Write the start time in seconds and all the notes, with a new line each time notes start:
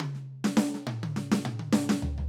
0.00 high tom
0.15 snare
0.44 snare
0.57 snare
0.74 snare
0.87 mid tom
1.03 high tom
1.16 snare
1.32 snare
1.45 mid tom
1.59 high tom
1.73 snare
1.89 snare
2.02 floor tom
2.18 floor tom